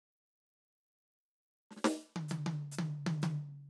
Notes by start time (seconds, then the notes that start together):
1.71 snare
1.76 snare
1.84 snare
2.16 high tom
2.28 hi-hat pedal, high tom
2.46 high tom
2.71 hi-hat pedal
2.78 high tom
3.06 high tom
3.22 hi-hat pedal, high tom